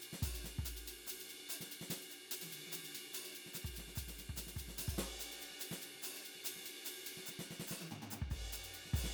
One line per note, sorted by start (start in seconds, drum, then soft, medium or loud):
0.01 hi-hat pedal soft
0.01 ride medium
0.13 snare soft
0.23 kick soft
0.23 hi-hat pedal medium
0.23 ride medium
0.35 ride medium
0.43 snare soft
0.43 hi-hat pedal soft
0.43 ride medium
0.59 kick soft
0.65 hi-hat pedal loud
0.65 ride medium
0.77 ride medium
0.86 hi-hat pedal soft
0.86 ride medium
1.07 hi-hat pedal loud
1.07 ride loud
1.21 ride medium
1.27 hi-hat pedal soft
1.27 ride medium
1.40 snare soft
1.49 hi-hat pedal loud
1.49 ride medium
1.61 snare soft
1.61 ride medium
1.69 hi-hat pedal soft
1.69 ride medium
1.82 snare soft
1.90 snare medium
1.90 hi-hat pedal medium
1.90 ride loud
2.02 ride soft
2.11 hi-hat pedal medium
2.11 ride medium
2.32 hi-hat pedal loud
2.32 ride loud
2.42 high tom soft
2.42 ride medium
2.51 hi-hat pedal soft
2.51 ride medium
2.67 high tom soft
2.72 hi-hat pedal loud
2.72 high tom soft
2.72 ride loud
2.85 ride medium
2.92 hi-hat pedal soft
2.92 ride loud
3.14 hi-hat pedal medium
3.14 ride loud
3.25 ride medium
3.33 hi-hat pedal soft
3.33 ride medium
3.47 snare soft
3.54 snare soft
3.54 hi-hat pedal medium
3.54 ride medium
3.65 kick soft
3.65 ride medium
3.74 hi-hat pedal soft
3.74 ride medium
3.79 snare soft
3.88 snare soft
3.96 kick soft
3.96 hi-hat pedal medium
3.96 ride medium
4.08 snare soft
4.08 ride medium
4.15 hi-hat pedal soft
4.19 snare soft
4.19 ride medium
4.30 kick soft
4.37 snare soft
4.37 hi-hat pedal medium
4.37 ride loud
4.47 snare soft
4.47 ride medium
4.57 kick soft
4.57 hi-hat pedal soft
4.57 ride medium
4.69 snare soft
4.78 snare soft
4.78 hi-hat pedal loud
4.78 ride loud
4.88 kick soft
4.88 ride medium
4.98 snare medium
4.98 hi-hat pedal soft
4.98 ride medium
5.20 hi-hat pedal medium
5.20 ride medium
5.32 ride medium
5.40 hi-hat pedal soft
5.40 ride medium
5.51 snare soft
5.60 hi-hat pedal medium
5.60 ride loud
5.72 snare medium
5.72 ride medium
5.80 hi-hat pedal soft
5.80 ride medium
5.95 snare soft
6.03 hi-hat pedal loud
6.03 ride loud
6.16 ride medium
6.23 hi-hat pedal soft
6.23 ride medium
6.36 snare soft
6.45 hi-hat pedal loud
6.45 ride loud
6.57 snare soft
6.64 hi-hat pedal soft
6.64 ride medium
6.85 hi-hat pedal loud
6.85 ride loud
7.05 hi-hat pedal soft
7.05 ride loud
7.18 snare soft
7.26 snare soft
7.26 hi-hat pedal loud
7.39 snare medium
7.46 hi-hat pedal soft
7.51 snare soft
7.60 snare medium
7.68 snare medium
7.68 hi-hat pedal loud
7.81 high tom medium
7.87 hi-hat pedal soft
7.92 floor tom medium
8.02 floor tom medium
8.11 floor tom medium
8.11 hi-hat pedal loud
8.22 kick soft
8.31 kick soft
8.31 hi-hat pedal soft
8.31 crash soft
8.31 ride medium
8.53 hi-hat pedal loud
8.53 ride medium
8.64 ride medium
8.74 hi-hat pedal soft
8.74 ride medium
8.86 snare soft
8.94 kick medium
8.94 hi-hat pedal loud
8.94 ride medium
9.04 snare medium
9.04 ride soft